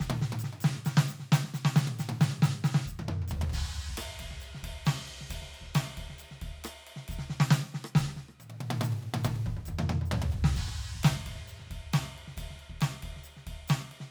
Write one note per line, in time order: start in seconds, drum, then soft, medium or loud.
0.01 kick soft
0.01 snare medium
0.01 percussion medium
0.09 kick soft
0.09 high tom loud
0.22 snare medium
0.33 high tom medium
0.40 percussion medium
0.45 snare medium
0.53 high tom medium
0.61 snare loud
0.61 percussion medium
0.76 cross-stick soft
0.86 snare medium
0.86 percussion medium
0.98 snare loud
1.09 snare soft
1.09 percussion medium
1.20 snare soft
1.33 snare loud
1.33 percussion medium
1.45 snare soft
1.55 snare medium
1.55 percussion medium
1.66 snare loud
1.77 snare loud
1.77 percussion medium
1.88 high tom loud
2.00 snare medium
2.00 percussion medium
2.10 high tom loud
2.22 snare loud
2.22 percussion medium
2.32 high tom medium
2.43 snare loud
2.43 percussion medium
2.55 cross-stick soft
2.65 snare loud
2.65 percussion medium
2.75 snare loud
2.87 kick soft
2.87 percussion medium
2.95 kick soft
3.00 mid tom medium
3.09 mid tom loud
3.23 mid tom soft
3.29 kick soft
3.29 floor tom loud
3.29 percussion medium
3.36 kick soft
3.42 floor tom loud
3.50 kick medium
3.50 percussion soft
3.50 crash loud
3.50 floor tom soft
3.66 kick soft
3.90 kick soft
3.98 cross-stick medium
3.98 ride loud
3.98 percussion soft
4.20 kick soft
4.20 ride medium
4.27 kick soft
4.32 snare soft
4.41 ride medium
4.41 percussion soft
4.55 snare soft
4.64 kick soft
4.64 ride loud
4.70 kick soft
4.86 snare loud
4.86 percussion medium
4.86 ride medium
5.08 ride soft
5.22 snare soft
5.31 kick soft
5.31 ride loud
5.31 percussion medium
5.37 kick soft
5.43 snare soft
5.50 snare soft
5.55 ride soft
5.62 kick soft
5.68 kick soft
5.75 snare loud
5.75 ride loud
5.75 percussion medium
5.98 kick soft
5.98 ride medium
6.04 kick soft
6.10 snare soft
6.19 ride medium
6.19 percussion medium
6.32 snare soft
6.42 kick soft
6.42 ride medium
6.50 kick soft
6.65 cross-stick medium
6.65 ride medium
6.65 percussion medium
6.88 ride medium
6.97 snare soft
7.09 kick medium
7.09 ride medium
7.09 percussion medium
7.17 kick soft
7.17 snare medium
7.30 snare medium
7.41 snare loud
7.51 snare loud
7.51 percussion medium
7.63 snare soft
7.75 snare medium
7.85 cross-stick medium
7.96 kick soft
7.96 snare loud
7.96 percussion medium
8.03 kick soft
8.09 snare soft
8.17 snare soft
8.29 cross-stick soft
8.41 high tom soft
8.41 percussion soft
8.50 high tom medium
8.61 high tom medium
8.71 high tom loud
8.82 high tom loud
8.82 percussion medium
8.93 high tom medium
9.03 high tom soft
9.15 high tom loud
9.25 kick soft
9.25 high tom loud
9.25 percussion medium
9.32 kick soft
9.32 high tom medium
9.47 kick medium
9.47 mid tom medium
9.57 kick soft
9.57 mid tom medium
9.66 kick soft
9.66 mid tom medium
9.66 percussion medium
9.80 mid tom loud
9.90 mid tom loud
10.02 mid tom medium
10.06 percussion soft
10.12 floor tom loud
10.23 floor tom loud
10.31 kick soft
10.31 floor tom medium
10.31 percussion soft
10.42 kick soft
10.42 snare loud
10.56 kick medium
10.56 percussion soft
10.56 crash loud
10.68 kick soft
10.68 cross-stick soft
10.95 kick soft
11.00 kick soft
11.00 ride loud
11.05 snare loud
11.05 percussion medium
11.14 snare soft
11.27 kick soft
11.27 ride medium
11.33 kick soft
11.33 snare soft
11.48 ride soft
11.48 percussion soft
11.60 snare soft
11.68 kick soft
11.68 snare soft
11.72 ride medium
11.78 kick soft
11.94 snare loud
11.94 ride loud
11.94 percussion medium
12.19 ride soft
12.28 snare soft
12.38 kick soft
12.38 ride medium
12.38 percussion soft
12.45 kick soft
12.51 snare soft
12.57 snare soft
12.57 ride soft
12.70 kick soft
12.76 kick soft
12.82 snare medium
12.82 ride medium
12.82 percussion medium
12.93 snare soft
13.03 kick soft
13.03 ride medium
13.11 kick soft
13.17 snare soft
13.24 ride soft
13.24 percussion medium
13.37 snare soft
13.48 kick soft
13.48 ride medium
13.54 kick soft
13.68 snare loud
13.68 ride medium
13.68 percussion medium
13.92 ride soft
14.01 snare soft